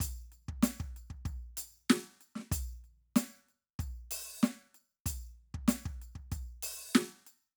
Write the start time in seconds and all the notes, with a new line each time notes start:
0.01 kick, percussion
0.33 percussion
0.49 kick
0.63 snare, percussion
0.81 kick
0.97 percussion
1.11 kick
1.26 kick, percussion
1.58 percussion
1.90 snare, percussion
2.22 percussion
2.36 snare
2.40 snare
2.52 kick, percussion
2.85 percussion
3.17 snare, percussion
3.49 percussion
3.80 kick, percussion
4.12 percussion
4.44 snare, percussion
4.75 percussion
5.07 kick, percussion
5.38 percussion
5.55 kick
5.69 snare, percussion
5.86 kick
6.03 percussion
6.16 kick
6.33 kick, percussion
6.63 percussion
6.95 snare, percussion
7.27 percussion